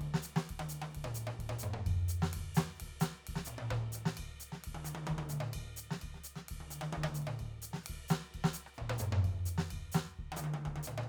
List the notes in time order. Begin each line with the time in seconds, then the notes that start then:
0.01 kick, ride
0.14 snare
0.23 hi-hat pedal, ride
0.36 snare
0.49 kick, ride
0.58 kick, high tom
0.69 hi-hat pedal
0.73 ride
0.82 high tom
0.90 hi-hat pedal
0.95 kick, ride
1.04 mid tom
1.15 hi-hat pedal, ride
1.27 mid tom
1.39 kick, ride
1.49 mid tom
1.59 hi-hat pedal
1.63 floor tom
1.74 floor tom
1.83 kick, floor tom, ride bell
1.95 kick
2.08 hi-hat pedal, ride
2.22 snare
2.30 hi-hat pedal, ride
2.37 kick
2.55 snare, hi-hat pedal
2.75 hi-hat pedal
2.80 kick, ride
3.00 snare, hi-hat pedal
3.27 kick, ride
3.36 snare
3.45 hi-hat pedal, mid tom
3.58 mid tom
3.71 kick, mid tom
3.92 hi-hat pedal, mid tom
4.06 snare
4.14 hi-hat pedal, ride bell
4.19 kick
4.25 kick
4.40 hi-hat pedal, ride
4.52 snare
4.64 kick, ride
4.73 kick, high tom
4.85 hi-hat pedal, high tom
4.95 high tom
5.06 hi-hat pedal, high tom
5.11 kick
5.18 high tom
5.29 hi-hat pedal, mid tom
5.40 mid tom
5.48 mid tom
5.53 kick, ride bell
5.76 hi-hat pedal, ride
5.91 snare
5.98 hi-hat pedal, ride bell
6.03 kick
6.14 snare
6.24 hi-hat pedal, ride
6.36 snare
6.49 kick, ride
6.60 high tom
6.71 hi-hat pedal
6.81 high tom
6.93 high tom
6.97 kick
7.04 high tom
7.14 hi-hat pedal, mid tom
7.22 ride
7.27 mid tom
7.39 kick, mid tom, ride bell
7.62 hi-hat pedal, ride
7.73 snare
7.83 hi-hat pedal, ride
7.90 kick
8.08 snare, hi-hat pedal
8.34 kick, ride bell
8.44 snare
8.53 hi-hat pedal, ride
8.66 cross-stick
8.74 hi-hat pedal
8.78 kick, mid tom
8.90 mid tom
8.98 floor tom, hi-hat pedal
9.12 floor tom
9.18 floor tom
9.24 kick, ride bell
9.31 kick
9.46 hi-hat pedal, ride
9.58 snare
9.67 hi-hat pedal, ride bell
9.73 kick
9.80 kick
9.92 snare, hi-hat pedal
10.19 kick
10.26 kick
10.32 high tom
10.36 hi-hat pedal, high tom
10.44 high tom
10.54 high tom
10.65 kick, high tom
10.73 kick, high tom
10.83 hi-hat pedal
10.87 mid tom
10.98 mid tom
11.03 mid tom